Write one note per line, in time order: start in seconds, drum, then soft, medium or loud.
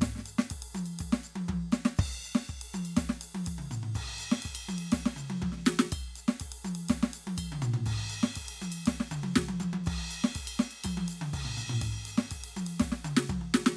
0.01 kick medium
0.01 snare loud
0.01 ride loud
0.01 percussion medium
0.15 snare soft
0.18 snare medium
0.26 ride loud
0.26 percussion medium
0.38 snare loud
0.50 kick medium
0.50 ride loud
0.50 percussion medium
0.62 ride loud
0.75 high tom loud
0.75 percussion medium
0.86 ride bell medium
0.99 kick medium
0.99 ride loud
0.99 percussion medium
1.12 snare loud
1.23 percussion loud
1.36 high tom loud
1.46 kick medium
1.46 high tom loud
1.46 percussion soft
1.72 snare loud
1.72 percussion medium
1.85 snare loud
1.97 kick loud
1.97 crash loud
1.97 percussion medium
2.24 percussion medium
2.35 snare loud
2.48 kick medium
2.48 percussion medium
2.61 ride loud
2.74 high tom loud
2.74 percussion loud
2.85 ride bell medium
2.97 kick medium
2.97 snare loud
2.97 ride loud
2.97 percussion medium
3.09 snare medium
3.21 ride loud
3.21 percussion medium
3.35 high tom loud
3.44 kick medium
3.44 ride loud
3.44 percussion medium
3.58 mid tom medium
3.65 mid tom soft
3.71 floor tom loud
3.71 percussion loud
3.83 floor tom medium
3.95 kick medium
3.95 percussion medium
3.95 ride loud
4.18 ride medium
4.18 percussion loud
4.32 snare loud
4.42 kick medium
4.42 ride loud
4.42 percussion medium
4.55 ride bell loud
4.69 high tom loud
4.69 percussion medium
4.78 ride loud
4.92 kick medium
4.92 snare loud
4.92 ride loud
4.92 percussion medium
5.06 snare loud
5.16 mid tom loud
5.16 percussion medium
5.30 high tom loud
5.40 kick medium
5.40 high tom loud
5.40 percussion soft
5.52 snare medium
5.57 snare soft
5.61 kick soft
5.61 snare soft
5.66 snare loud
5.66 percussion loud
5.79 snare loud
5.89 kick medium
5.89 ride bell loud
5.89 percussion medium
6.16 ride medium
6.16 percussion medium
6.28 snare loud
6.40 kick medium
6.40 ride loud
6.40 percussion medium
6.52 ride loud
6.65 high tom loud
6.65 percussion medium
6.75 ride loud
6.89 kick medium
6.89 snare loud
6.89 ride loud
6.89 percussion medium
7.03 snare loud
7.13 ride loud
7.13 percussion medium
7.27 high tom loud
7.37 kick medium
7.37 ride bell loud
7.37 percussion medium
7.52 mid tom loud
7.62 floor tom loud
7.62 percussion medium
7.74 floor tom loud
7.86 kick medium
7.86 percussion medium
7.86 ride loud
8.10 ride loud
8.10 percussion medium
8.23 snare loud
8.35 kick medium
8.35 ride loud
8.35 percussion medium
8.48 ride loud
8.62 high tom loud
8.62 percussion loud
8.72 ride bell loud
8.86 kick medium
8.86 snare loud
8.86 ride loud
8.86 percussion medium
9.00 snare medium
9.11 kick soft
9.11 mid tom loud
9.11 percussion medium
9.23 high tom loud
9.34 kick medium
9.34 snare loud
9.34 percussion medium
9.48 high tom loud
9.60 kick soft
9.60 high tom loud
9.60 percussion loud
9.73 cross-stick soft
9.73 high tom loud
9.84 kick loud
9.84 percussion soft
9.84 ride loud
10.11 ride bell medium
10.11 percussion medium
10.24 snare loud
10.35 kick medium
10.35 ride loud
10.35 percussion medium
10.47 ride bell loud
10.59 snare loud
10.59 percussion medium
10.71 ride bell medium
10.84 kick medium
10.84 high tom loud
10.84 ride bell loud
10.84 percussion medium
10.97 high tom loud
11.08 ride loud
11.08 percussion medium
11.21 mid tom loud
11.33 kick medium
11.33 percussion medium
11.33 ride loud
11.45 floor tom medium
11.57 floor tom medium
11.57 percussion loud
11.69 floor tom loud
11.81 kick medium
11.81 ride loud
11.81 percussion medium
12.05 ride loud
12.05 percussion medium
12.18 snare loud
12.31 kick medium
12.31 ride loud
12.31 percussion medium
12.44 ride loud
12.56 high tom loud
12.56 percussion loud
12.66 ride loud
12.80 kick medium
12.80 snare loud
12.80 ride loud
12.80 percussion medium
12.92 snare medium
13.04 mid tom loud
13.04 percussion medium
13.17 snare loud
13.28 kick medium
13.28 high tom loud
13.28 percussion medium
13.41 high tom medium
13.51 kick soft
13.51 snare loud
13.51 percussion loud
13.66 snare loud